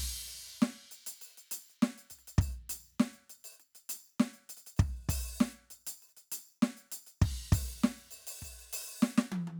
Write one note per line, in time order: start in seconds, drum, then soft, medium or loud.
0.10 percussion soft
0.27 percussion soft
0.47 percussion soft
0.62 snare loud
0.91 percussion medium
1.07 percussion loud
1.22 percussion medium
1.31 percussion soft
1.38 percussion medium
1.51 percussion loud
1.70 percussion soft
1.82 snare loud
1.98 percussion soft
2.10 kick soft
2.10 percussion medium
2.19 percussion soft
2.28 percussion medium
2.38 kick loud
2.38 percussion medium
2.50 percussion soft
2.70 percussion loud
3.00 snare loud
3.13 percussion soft
3.30 percussion medium
3.44 percussion medium
3.52 percussion soft
3.60 percussion soft
3.75 percussion soft
3.89 percussion loud
4.08 percussion soft
4.20 snare loud
4.33 percussion soft
4.49 percussion medium
4.57 percussion soft
4.67 percussion medium
4.77 kick loud
4.77 percussion soft
5.09 kick loud
5.09 percussion loud
5.28 percussion soft
5.41 snare loud
5.51 percussion soft
5.55 percussion soft
5.71 percussion medium
5.87 percussion loud
6.02 percussion soft
6.09 percussion soft
6.17 percussion soft
6.32 percussion loud
6.48 percussion soft
6.62 snare loud
6.77 percussion soft
6.92 percussion loud
7.07 percussion soft
7.22 kick loud
7.22 crash medium
7.38 percussion soft
7.52 kick loud
7.52 percussion loud
7.70 percussion soft
7.84 snare loud
7.98 percussion soft
8.11 percussion medium
8.27 percussion loud
8.42 kick soft
8.42 percussion medium
8.50 kick soft
8.59 percussion soft
8.73 percussion loud
8.88 percussion soft
9.03 snare loud
9.18 snare loud
9.32 high tom loud
9.47 high tom medium